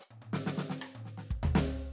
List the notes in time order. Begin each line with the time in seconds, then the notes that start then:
0.00 hi-hat pedal
0.10 high tom
0.22 high tom
0.33 snare
0.46 snare
0.58 snare
0.70 snare
0.81 cross-stick
0.95 high tom
1.05 snare
1.18 snare
1.30 kick
1.43 floor tom
1.55 snare